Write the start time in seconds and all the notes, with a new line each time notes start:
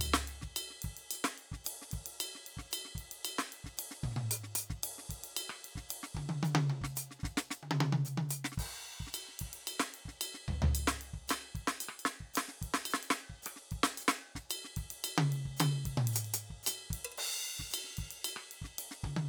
0.01 hi-hat pedal, ride bell
0.14 snare
0.28 ride
0.42 kick, snare
0.56 hi-hat pedal, ride bell
0.70 snare
0.82 kick, ride
0.90 kick, snare
0.97 ride
1.11 hi-hat pedal, ride bell
1.24 snare
1.38 ride
1.52 kick, snare
1.64 hi-hat pedal, ride
1.82 snare
1.91 kick, snare, ride
1.96 kick, snare
2.06 ride
2.20 hi-hat pedal, ride bell
2.35 snare
2.47 ride
2.57 kick, snare
2.65 snare
2.71 hi-hat pedal, ride bell
2.85 snare
2.91 snare
2.95 kick, snare, ride
2.98 snare
3.11 ride
3.25 hi-hat pedal, ride bell
3.39 snare
3.52 ride
3.64 kick, snare
3.77 hi-hat pedal, ride
3.91 snare
4.03 kick, snare, mid tom
4.11 snare
4.16 snare, mid tom
4.18 snare
4.21 snare
4.31 closed hi-hat, hi-hat pedal
4.44 snare
4.55 closed hi-hat
4.70 kick, snare
4.83 hi-hat pedal, ride
4.98 snare
5.04 snare
5.09 kick, ride
5.21 snare, ride
5.37 hi-hat pedal, ride bell
5.50 cross-stick
5.65 ride
5.76 kick, snare
5.89 hi-hat pedal, ride
6.03 snare
6.15 kick, high tom
6.29 high tom
6.43 hi-hat pedal, high tom
6.55 high tom
6.70 high tom
6.81 kick, snare
6.96 closed hi-hat, hi-hat pedal
7.11 snare
7.19 snare
7.23 kick, snare
7.30 kick
7.37 snare
7.51 snare, hi-hat pedal
7.63 high tom
7.71 high tom
7.81 high tom
7.93 high tom
8.05 hi-hat pedal
8.18 open hi-hat, high tom
8.29 closed hi-hat, hi-hat pedal
8.45 snare
8.52 snare
8.58 kick, hi-hat pedal, crash
8.70 kick
9.00 kick
9.07 snare
9.13 hi-hat pedal, ride bell
9.28 snare
9.39 kick, ride
9.52 snare, ride
9.56 snare
9.67 hi-hat pedal, ride bell
9.80 snare
9.94 ride
10.05 kick, snare
10.21 hi-hat pedal, ride bell
10.34 snare
10.48 kick, floor tom
10.54 kick
10.62 floor tom
10.75 hi-hat pedal, ride bell
10.87 snare
11.01 ride
11.14 kick
11.28 snare, hi-hat pedal, ride bell
11.55 kick, ride
11.68 snare
11.80 hi-hat pedal, ride bell
11.89 cross-stick
11.99 ride bell
12.05 snare
12.20 kick
12.34 snare, hi-hat pedal, ride
12.48 snare
12.62 kick, ride
12.68 kick
12.74 snare
12.85 ride bell
12.90 hi-hat pedal
12.94 snare
13.03 ride
13.10 snare
13.30 kick
13.43 cross-stick, hi-hat pedal, ride, percussion
13.56 snare
13.71 kick, ride
13.83 snare
13.98 hi-hat pedal, ride bell
14.08 snare
14.35 kick, snare
14.50 hi-hat pedal, ride bell
14.65 snare
14.76 kick, cross-stick, ride
14.83 kick
14.91 ride
15.04 hi-hat pedal, ride bell
15.18 high tom
15.32 ride
15.45 kick
15.57 hi-hat pedal, high tom, ride bell
15.85 kick, ride
15.97 mid tom
16.07 ride
16.12 closed hi-hat, hi-hat pedal
16.25 ride
16.34 closed hi-hat
16.50 kick
16.63 hi-hat pedal, ride bell
16.67 closed hi-hat
16.90 kick, ride
16.97 kick
17.05 percussion
17.12 percussion
17.18 hi-hat pedal, crash
17.59 kick, snare
17.70 hi-hat pedal, ride bell
17.84 snare
17.90 snare
17.97 kick, ride
18.04 kick
18.11 ride
18.25 hi-hat pedal, ride bell
18.36 cross-stick
18.51 ride
18.62 kick, snare
18.78 hi-hat pedal, ride
18.91 snare
19.04 kick, high tom
19.10 kick
19.17 high tom